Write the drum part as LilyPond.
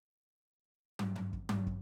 \new DrumStaff \drummode { \time 4/4 \tempo 4 = 122 r4 r4 \tuplet 3/2 { <tommh tomfh>8 <tomfh tommh>8 bd8 <tomfh tommh>8 bd8 r8 } | }